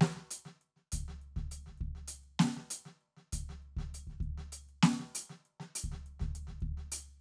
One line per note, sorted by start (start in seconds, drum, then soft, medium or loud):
0.01 snare loud
0.16 snare soft
0.31 closed hi-hat loud
0.45 snare soft
0.61 closed hi-hat soft
0.76 snare soft
0.92 closed hi-hat loud
0.92 kick medium
1.08 snare soft
1.22 closed hi-hat soft
1.36 kick medium
1.36 snare soft
1.51 closed hi-hat medium
1.66 kick soft
1.66 snare soft
1.78 kick medium
1.78 closed hi-hat soft
1.95 snare soft
2.08 closed hi-hat medium
2.23 closed hi-hat soft
2.39 snare loud
2.44 snare medium
2.57 snare soft
2.71 closed hi-hat loud
2.85 snare soft
3.01 closed hi-hat soft
3.17 snare soft
3.33 closed hi-hat medium
3.33 kick medium
3.49 snare soft
3.62 closed hi-hat soft
3.77 kick medium
3.77 snare soft
3.86 kick soft
3.94 closed hi-hat medium
4.07 kick soft
4.07 snare soft
4.20 kick medium
4.20 closed hi-hat soft
4.38 snare soft
4.52 closed hi-hat medium
4.69 closed hi-hat soft
4.83 snare loud
4.99 snare soft
5.15 closed hi-hat loud
5.30 snare soft
5.45 closed hi-hat soft
5.60 snare soft
5.75 closed hi-hat loud
5.84 kick medium
5.92 snare soft
6.06 closed hi-hat soft
6.20 kick medium
6.20 snare soft
6.35 closed hi-hat medium
6.47 kick soft
6.47 snare soft
6.61 kick medium
6.61 closed hi-hat soft
6.78 snare soft
6.84 snare soft
6.92 closed hi-hat loud